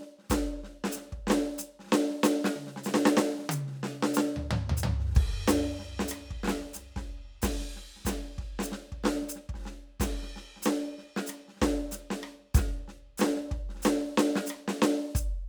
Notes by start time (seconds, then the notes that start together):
0.01 snare
0.19 snare
0.23 snare
0.27 snare
0.30 kick, snare, hi-hat pedal
0.36 snare
0.51 snare
0.54 snare
0.57 snare
0.60 snare
0.63 snare
0.84 snare
0.92 hi-hat pedal
0.96 snare
1.12 kick
1.27 snare
1.30 snare
1.36 snare
1.47 snare
1.58 snare, hi-hat pedal
1.68 snare
1.79 snare
1.83 snare
1.87 snare
1.92 snare
2.10 snare
2.16 snare
2.19 snare
2.21 snare
2.23 snare, hi-hat pedal
2.44 snare
2.56 high tom
2.67 snare
2.76 snare
2.84 snare, hi-hat pedal
2.94 snare
3.06 snare
3.17 snare
3.38 snare
3.41 snare
3.43 snare
3.47 snare, hi-hat pedal, high tom
3.67 snare
3.71 snare
3.74 snare
3.78 snare
3.82 snare
4.03 snare
4.14 snare, hi-hat pedal
4.36 floor tom
4.51 floor tom
4.70 floor tom
4.77 hi-hat pedal
4.83 floor tom
4.96 kick, snare
5.06 snare
5.10 snare
5.13 kick, snare, ride
5.17 snare
5.48 snare, hi-hat pedal
5.67 snare
5.72 snare
5.75 snare
5.78 snare
5.99 snare
6.08 cross-stick, hi-hat pedal
6.31 kick
6.44 snare
6.48 snare
6.62 snare
6.74 snare, hi-hat pedal
6.96 kick, snare
7.42 kick, snare, hi-hat pedal, crash
7.60 snare
7.76 snare
7.96 snare
8.00 snare
8.05 kick, snare, hi-hat pedal
8.11 snare
8.24 snare
8.28 snare
8.38 kick, snare
8.45 snare
8.59 snare, hi-hat pedal
8.72 snare
8.92 kick
9.04 snare
9.06 snare
9.21 snare
9.29 hi-hat pedal
9.35 snare
9.49 kick
9.54 snare
9.58 snare
9.62 snare
9.65 snare
9.70 snare
10.00 kick, snare, hi-hat pedal, ride
10.23 snare
10.36 snare
10.56 snare
10.60 snare, hi-hat pedal
10.64 snare
10.66 snare
10.83 snare
10.98 snare
11.17 snare
11.27 cross-stick, hi-hat pedal
11.48 snare
11.53 snare
11.56 snare
11.62 kick, snare
11.67 snare
11.80 snare
11.84 snare
11.87 snare, hi-hat pedal
11.92 snare
12.10 snare
12.23 cross-stick
12.54 kick, snare, hi-hat pedal
12.88 snare
13.18 snare, hi-hat pedal
13.22 snare
13.26 snare
13.36 snare
13.51 kick, snare
13.69 snare
13.75 snare
13.79 snare
13.82 snare, hi-hat pedal
13.85 snare
13.99 snare
14.03 snare
14.06 snare
14.09 snare
14.15 snare
14.18 snare
14.36 snare
14.46 cross-stick, hi-hat pedal
14.68 snare
14.82 snare
15.15 kick, hi-hat pedal